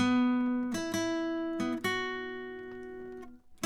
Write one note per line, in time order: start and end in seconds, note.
0.00 0.79 B3
0.76 0.96 E4
0.96 1.83 E4
1.61 1.80 B3
1.86 3.33 F#4